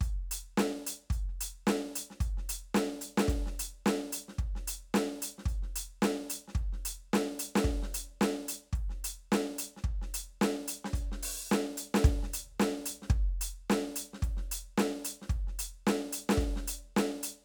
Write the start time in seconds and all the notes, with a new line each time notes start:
0.01 closed hi-hat, kick
0.22 snare
0.31 closed hi-hat
0.58 snare
0.87 closed hi-hat
1.10 closed hi-hat, kick
1.28 snare
1.41 closed hi-hat
1.67 snare
1.96 closed hi-hat
2.11 snare
2.21 closed hi-hat, kick
2.38 snare
2.49 closed hi-hat
2.75 snare
3.02 closed hi-hat
3.18 snare
3.28 kick, closed hi-hat
3.46 snare
3.53 snare
3.60 closed hi-hat
3.86 snare
4.13 closed hi-hat
4.29 snare
4.39 kick, closed hi-hat
4.56 snare
4.68 closed hi-hat
4.94 snare
5.22 closed hi-hat
5.38 snare
5.46 closed hi-hat, kick
5.63 snare
5.76 closed hi-hat
6.02 snare
6.30 closed hi-hat
6.48 snare
6.55 kick, closed hi-hat
6.73 snare
6.85 closed hi-hat
7.14 snare
7.40 closed hi-hat
7.56 snare
7.65 kick, closed hi-hat
7.83 snare
7.95 closed hi-hat
8.21 snare
8.49 closed hi-hat
8.73 kick, closed hi-hat
8.90 snare
9.05 closed hi-hat
9.32 snare
9.59 closed hi-hat
9.77 snare
9.84 kick
10.02 snare
10.14 closed hi-hat
10.42 snare
10.68 closed hi-hat
10.85 snare
10.94 closed hi-hat, kick
11.12 snare
11.23 open hi-hat
11.48 snare, hi-hat pedal
11.78 closed hi-hat
11.95 snare
12.04 kick, closed hi-hat
12.23 snare
12.34 closed hi-hat
12.60 snare
12.86 closed hi-hat
13.02 snare
13.10 kick, closed hi-hat
13.41 closed hi-hat
13.70 snare
13.96 closed hi-hat
14.14 snare
14.22 kick, closed hi-hat
14.37 snare
14.52 closed hi-hat
14.78 snare
15.05 closed hi-hat
15.22 snare
15.30 kick, closed hi-hat
15.47 snare
15.59 closed hi-hat
15.87 snare
16.13 closed hi-hat
16.29 snare
16.38 kick, closed hi-hat
16.56 snare
16.68 closed hi-hat
16.97 snare
17.23 closed hi-hat